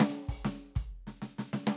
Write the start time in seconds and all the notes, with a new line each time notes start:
0.00 snare
0.29 open hi-hat, kick
0.40 hi-hat pedal
0.45 snare
0.76 open hi-hat, kick
1.07 snare
1.22 snare
1.39 snare
1.53 snare
1.67 snare